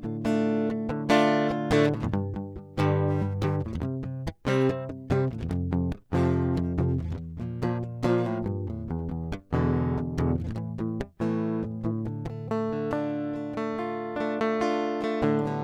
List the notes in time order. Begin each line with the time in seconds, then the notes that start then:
0.01 A2 D3 F4
0.26 D3 A3 D4 F4
0.65 F4
0.72 D4
0.91 A2 D3 D4
1.11 D3 A3 D4 F4
1.50 D3 D4
1.71 A2 D3 A3 F4
1.75 D4
1.89 B3 E4
1.96 A2 D3
2.04 F#2 A#2 D3
2.15 G2
2.36 G2
2.58 G2
2.79 G2 D3 G3
3.24 G2 D3
3.43 G2 D3 F3
3.62 A2
3.75 B2
3.85 C3 G3
4.05 C3
4.47 C3 G3 C4
4.72 C3 G3
4.91 C3
5.12 C3 G3 C4
5.30 A2
5.34 E2
5.42 E2 A2
5.53 F2 C3
5.74 F2 C3
6.14 F2 C3 F3
6.59 F2 C3 F3
6.80 F2 C3 F3
7.00 E2 A2
7.12 E2 A2
7.25 E2
7.40 A#2 F3 A#3
7.64 A#2 F3 A#3
7.85 A#2 A#3
8.05 A#2 F3 A#3
8.29 A2
8.46 G2
8.69 E2 A2
8.90 E2
9.11 E2 B2
9.54 E2 B2 D3 G#3
10.00 E2 B2 D3
10.20 E2 B2 G#3
10.38 A2
10.44 D#3
10.50 A2
10.58 A2
10.80 A2 E3
11.22 A2 E3 A3
11.66 A2 D#3
11.86 A2 E3
12.07 A2
12.28 A3
12.52 A3 D4
12.75 D3
12.93 A3 D4 F4
13.36 A3
13.59 A3
13.81 F4
14.18 D4
14.22 A3
14.38 D4
14.43 A3
14.63 D4 F4
15.02 A3 D4
15.23 A2 D3 A3 D4 F4
15.41 G3 E4
15.47 D3 B3